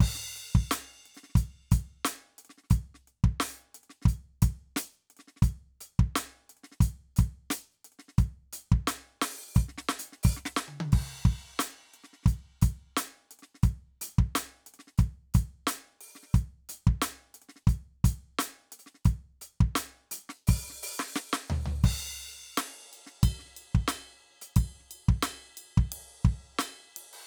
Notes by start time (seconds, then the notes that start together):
0.01 kick, crash
0.15 snare
0.19 snare
0.36 closed hi-hat
0.56 kick
0.72 closed hi-hat, snare
1.06 closed hi-hat
1.15 closed hi-hat, snare
1.24 snare
1.30 snare
1.36 closed hi-hat, kick, snare
1.72 closed hi-hat, kick
2.05 closed hi-hat, snare
2.39 closed hi-hat
2.45 closed hi-hat
2.50 snare
2.58 snare
2.64 snare
2.70 closed hi-hat, kick, snare
2.95 snare
3.08 closed hi-hat
3.24 kick
3.41 open hi-hat, snare
3.57 hi-hat pedal
3.75 closed hi-hat
3.84 closed hi-hat
3.90 snare
4.02 kick, snare
4.09 closed hi-hat
4.43 kick, closed hi-hat
4.77 closed hi-hat, snare
4.92 hi-hat pedal
5.11 closed hi-hat
5.17 snare, closed hi-hat
5.28 snare
5.37 snare
5.43 closed hi-hat, kick
5.81 closed hi-hat
6.00 kick
6.16 closed hi-hat, snare
6.50 closed hi-hat
6.57 closed hi-hat
6.64 snare
6.72 snare
6.81 closed hi-hat, kick, snare
7.17 closed hi-hat, kick
7.51 closed hi-hat, snare
7.72 hi-hat pedal
7.85 closed hi-hat
7.92 closed hi-hat
7.99 snare
8.09 snare
8.18 closed hi-hat, kick
8.53 closed hi-hat
8.72 kick
8.88 open hi-hat, snare
9.22 open hi-hat, snare
9.55 open hi-hat, kick
9.59 hi-hat pedal
9.69 snare
9.78 snare
9.89 snare
10.00 closed hi-hat
10.13 snare
10.24 open hi-hat, kick
10.33 snare, hi-hat pedal
10.46 snare
10.57 snare, hi-hat pedal
10.69 high tom
10.81 high tom
10.93 kick, crash
11.26 kick
11.60 open hi-hat, snare
11.94 closed hi-hat
12.03 snare, closed hi-hat
12.14 snare
12.24 kick, snare
12.28 closed hi-hat
12.62 closed hi-hat, kick
12.97 closed hi-hat, snare
13.11 hi-hat pedal
13.31 closed hi-hat
13.39 snare, closed hi-hat
13.55 snare
13.63 open hi-hat, kick
14.02 closed hi-hat
14.19 kick
14.36 closed hi-hat, snare
14.67 closed hi-hat
14.74 closed hi-hat
14.80 snare
14.88 snare
14.98 closed hi-hat, kick, snare
15.35 closed hi-hat, kick
15.67 closed hi-hat, snare
16.01 open hi-hat
16.09 open hi-hat
16.16 snare
16.23 snare
16.34 closed hi-hat, kick, snare, hi-hat pedal
16.69 closed hi-hat
16.87 kick
17.02 closed hi-hat, snare
17.35 closed hi-hat
17.42 closed hi-hat
17.49 snare
17.56 snare
17.68 closed hi-hat, kick
18.05 closed hi-hat, kick
18.39 closed hi-hat, snare
18.73 closed hi-hat
18.80 closed hi-hat
18.87 snare
18.95 snare
19.05 closed hi-hat, kick
19.42 closed hi-hat
19.61 kick
19.76 closed hi-hat, snare
20.12 closed hi-hat
20.30 snare
20.48 open hi-hat, kick
20.70 snare
20.75 snare
20.83 open hi-hat
21.00 snare
21.16 snare
21.34 snare
21.50 floor tom
21.66 floor tom
21.84 kick, crash
22.35 hi-hat pedal
22.58 snare, hi-hat pedal, ride
22.93 ride bell
23.07 snare
23.24 kick, ride bell
23.40 snare
23.46 snare
23.57 ride bell
23.75 kick, snare
23.88 snare, ride bell
24.42 closed hi-hat
24.57 kick, ride bell
24.80 snare
24.91 ride bell
25.09 kick
25.23 snare, ride bell
25.58 ride bell
25.78 kick
25.92 ride
26.25 kick
26.59 snare, ride bell
26.97 ride
27.14 crash